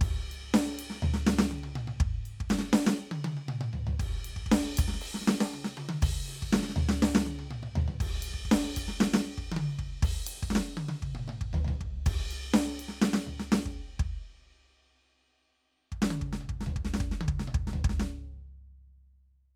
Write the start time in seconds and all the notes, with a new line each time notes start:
0.01 kick, ride
0.32 ride
0.54 snare, ride
0.79 ride
0.90 snare
0.95 snare
1.02 floor tom
1.14 snare
1.27 snare
1.39 snare
1.51 high tom
1.64 high tom
1.76 mid tom
1.88 mid tom
2.00 kick
2.26 ride bell
2.40 kick
2.50 snare, ride
2.59 snare
2.65 snare
2.73 snare
2.87 snare
3.11 high tom
3.25 high tom
3.37 high tom
3.49 mid tom
3.61 mid tom
3.73 floor tom
3.87 floor tom
4.00 kick, ride
4.25 ride
4.36 kick
4.46 kick
4.52 snare, ride
4.78 kick, ride
4.88 snare
4.94 snare
5.01 crash
5.14 snare
5.21 snare
5.28 snare
5.41 snare
5.54 high tom
5.65 snare
5.77 high tom
5.89 high tom
6.02 kick, crash
6.27 ride
6.42 kick
6.53 snare, ride
6.63 snare
6.69 snare
6.76 floor tom
6.89 snare
7.02 snare
7.15 snare
7.27 high tom
7.39 high tom
7.51 mid tom
7.63 mid tom
7.76 floor tom
7.88 floor tom
8.00 kick, ride
8.22 ride
8.34 kick
8.45 kick
8.52 snare, ride
8.77 kick, ride
8.88 snare
8.94 snare
9.01 snare
9.14 snare
9.38 kick
9.52 high tom
9.57 high tom
9.79 kick
10.03 kick, crash
10.27 ride
10.43 kick
10.51 snare
10.55 snare
10.77 high tom
10.89 high tom
11.02 kick
11.15 mid tom
11.28 mid tom
11.41 kick
11.53 floor tom
11.65 floor tom
11.68 floor tom
11.81 kick
12.06 kick, ride
12.31 ride
12.54 snare, ride
12.80 ride
12.89 snare
12.94 snare
13.02 snare
13.13 snare
13.27 floor tom
13.40 snare
13.52 snare
13.66 kick
14.00 kick
15.92 kick
16.02 snare
16.11 high tom
16.21 kick
16.33 snare
16.41 mid tom
16.49 kick
16.61 snare
16.66 floor tom
16.76 kick
16.85 snare
16.94 snare
17.00 kick
17.12 snare
17.21 high tom
17.28 kick
17.40 snare
17.48 mid tom
17.54 kick
17.67 snare
17.73 floor tom
17.84 kick
17.90 snare
18.00 snare